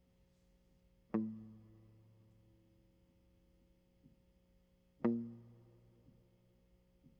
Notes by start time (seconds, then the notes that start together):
1.16 A2
5.06 A#2